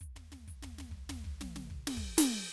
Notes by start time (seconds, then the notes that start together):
0.00 kick, hi-hat pedal
0.16 snare, floor tom
0.32 snare, floor tom
0.47 kick, hi-hat pedal
0.62 snare, floor tom
0.78 snare, floor tom
0.91 kick
1.09 snare, floor tom
1.24 kick
1.41 snare, high tom
1.56 snare, high tom
1.70 kick
1.87 snare, crash
1.97 kick
2.17 snare, crash